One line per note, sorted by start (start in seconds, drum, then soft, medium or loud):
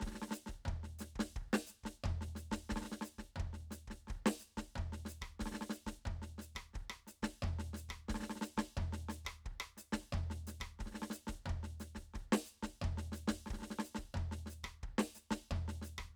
0.00 kick soft
0.00 snare soft
0.06 snare soft
0.11 snare soft
0.14 snare soft
0.21 snare soft
0.28 snare soft
0.31 snare medium
0.31 hi-hat pedal medium
0.46 kick soft
0.46 snare soft
0.65 kick soft
0.65 floor tom medium
0.83 snare soft
0.98 snare soft
0.98 hi-hat pedal medium
1.15 kick soft
1.15 snare medium
1.36 kick soft
1.53 snare medium
1.66 snare soft
1.66 hi-hat pedal medium
1.83 kick soft
1.83 snare soft
2.04 kick soft
2.04 floor tom medium
2.21 snare soft
2.35 snare soft
2.35 hi-hat pedal soft
2.51 kick soft
2.51 snare medium
2.69 kick soft
2.69 snare soft
2.76 snare soft
2.81 snare soft
2.84 snare soft
2.91 snare soft
3.01 snare soft
3.01 hi-hat pedal soft
3.18 kick soft
3.18 snare soft
3.36 kick soft
3.36 floor tom medium
3.53 snare soft
3.71 snare soft
3.71 hi-hat pedal medium
3.87 kick soft
3.87 snare soft
4.07 kick soft
4.07 snare soft
4.26 snare medium
4.39 snare soft
4.39 hi-hat pedal soft
4.57 kick soft
4.57 snare soft
4.62 kick soft
4.75 kick soft
4.75 floor tom medium
4.92 snare soft
5.05 snare soft
5.05 hi-hat pedal medium
5.21 kick soft
5.21 cross-stick medium
5.39 kick soft
5.39 snare soft
5.46 snare soft
5.51 snare soft
5.54 snare soft
5.61 snare soft
5.69 snare medium
5.69 hi-hat pedal soft
5.86 kick soft
5.86 snare soft
6.05 kick soft
6.05 floor tom medium
6.22 snare soft
6.38 snare soft
6.38 hi-hat pedal soft
6.55 kick soft
6.55 cross-stick medium
6.73 kick soft
6.73 snare soft
6.89 cross-stick medium
7.07 snare soft
7.07 hi-hat pedal soft
7.22 kick soft
7.22 snare medium
7.42 kick soft
7.42 floor tom medium
7.58 snare soft
7.73 snare soft
7.73 hi-hat pedal medium
7.89 kick soft
7.89 cross-stick medium
8.08 kick soft
8.08 snare soft
8.14 snare soft
8.19 snare soft
8.22 snare soft
8.35 snare soft
8.41 snare medium
8.41 hi-hat pedal soft
8.57 kick soft
8.57 snare medium
8.77 kick soft
8.77 floor tom medium
8.92 snare soft
9.08 snare soft
9.08 hi-hat pedal soft
9.25 kick soft
9.25 cross-stick medium
9.45 kick soft
9.45 snare soft
9.60 cross-stick medium
9.77 snare soft
9.77 hi-hat pedal medium
9.92 kick soft
9.92 snare medium
10.01 snare soft
10.12 kick soft
10.12 floor tom medium
10.30 snare soft
10.47 snare soft
10.47 hi-hat pedal medium
10.60 kick soft
10.60 cross-stick medium
10.79 kick soft
10.79 snare soft
10.86 snare soft
10.91 snare soft
10.94 snare soft
11.02 snare soft
11.10 snare soft
11.10 hi-hat pedal medium
11.27 kick soft
11.27 snare soft
11.46 kick soft
11.46 floor tom medium
11.63 snare soft
11.79 snare soft
11.79 hi-hat pedal soft
11.95 kick soft
11.95 snare soft
12.13 kick soft
12.13 snare soft
12.32 snare medium
12.45 snare soft
12.45 hi-hat pedal soft
12.62 kick soft
12.62 snare soft
12.81 kick soft
12.81 floor tom medium
12.97 snare soft
13.12 snare soft
13.12 hi-hat pedal soft
13.27 kick soft
13.27 snare medium
13.46 snare soft
13.50 kick soft
13.50 snare soft
13.59 snare soft
13.62 snare soft
13.70 snare soft
13.79 snare medium
13.84 hi-hat pedal soft
13.95 kick soft
13.95 snare soft
14.14 kick soft
14.14 floor tom medium
14.31 snare soft
14.46 snare soft
14.46 hi-hat pedal soft
14.63 kick soft
14.63 cross-stick medium
14.83 kick soft
14.83 snare soft
14.98 snare medium
15.14 snare soft
15.14 hi-hat pedal soft
15.30 kick soft
15.30 snare medium
15.51 kick soft
15.51 floor tom medium
15.68 snare soft
15.81 snare soft
15.81 hi-hat pedal soft
15.98 kick soft
15.98 cross-stick medium